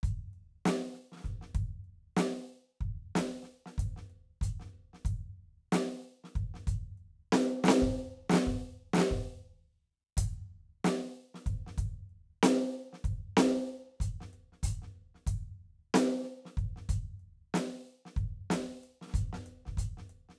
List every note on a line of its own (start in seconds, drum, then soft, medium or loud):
0.02 closed hi-hat soft
0.02 kick medium
0.07 crash soft
0.33 closed hi-hat soft
0.65 snare loud
0.65 closed hi-hat soft
0.93 snare soft
0.93 closed hi-hat soft
1.12 snare soft
1.16 snare soft
1.19 snare soft
1.22 kick medium
1.22 snare soft
1.22 closed hi-hat soft
1.41 snare soft
1.55 kick medium
1.55 closed hi-hat soft
1.84 closed hi-hat soft
2.16 closed hi-hat medium
2.16 snare loud
2.48 closed hi-hat soft
2.80 kick medium
2.80 closed hi-hat soft
3.15 closed hi-hat medium
3.15 snare loud
3.43 snare soft
3.47 closed hi-hat soft
3.66 snare soft
3.78 kick medium
3.78 closed hi-hat medium
3.96 snare soft
4.10 closed hi-hat soft
4.41 closed hi-hat medium
4.41 kick medium
4.60 snare soft
4.64 snare soft
4.75 closed hi-hat soft
4.93 snare soft
5.05 kick medium
5.05 closed hi-hat medium
5.72 closed hi-hat medium
5.72 snare loud
6.01 snare soft
6.01 closed hi-hat soft
6.24 snare soft
6.35 kick medium
6.35 closed hi-hat soft
6.54 snare soft
6.67 closed hi-hat medium
6.67 kick medium
6.97 closed hi-hat soft
7.32 closed hi-hat medium
7.32 snare loud
7.64 snare loud
7.68 snare loud
7.82 kick medium
8.30 snare loud
8.34 snare loud
8.47 kick medium
8.93 snare loud
8.98 snare loud
9.11 kick medium
10.17 kick medium
10.17 closed hi-hat loud
10.84 closed hi-hat medium
10.84 snare loud
11.34 snare soft
11.46 kick medium
11.46 closed hi-hat soft
11.66 snare soft
11.78 kick medium
11.78 closed hi-hat medium
12.09 closed hi-hat soft
12.43 closed hi-hat loud
12.43 snare loud
12.93 snare soft
13.04 kick medium
13.04 closed hi-hat soft
13.37 closed hi-hat medium
13.37 snare loud
13.69 closed hi-hat soft
14.00 closed hi-hat medium
14.00 kick medium
14.20 snare soft
14.33 closed hi-hat soft
14.52 snare soft
14.63 closed hi-hat loud
14.63 kick medium
14.82 snare soft
14.96 closed hi-hat soft
15.14 snare soft
15.26 kick medium
15.26 closed hi-hat medium
15.94 closed hi-hat loud
15.94 snare loud
16.22 snare soft
16.28 closed hi-hat soft
16.45 snare soft
16.57 kick medium
16.57 closed hi-hat soft
16.76 snare soft
16.89 closed hi-hat medium
16.89 kick medium
17.19 closed hi-hat soft
17.54 closed hi-hat medium
17.54 snare loud
17.86 closed hi-hat soft
18.05 snare soft
18.16 kick medium
18.16 closed hi-hat soft
18.50 closed hi-hat medium
18.50 snare loud
18.83 closed hi-hat soft
19.01 snare soft
19.06 snare soft
19.08 snare soft
19.10 kick medium
19.10 snare soft
19.15 closed hi-hat medium
19.33 snare medium
19.46 closed hi-hat soft
19.65 kick soft
19.65 snare soft
19.77 closed hi-hat medium
19.77 kick medium
19.97 snare soft
20.09 closed hi-hat soft
20.29 snare soft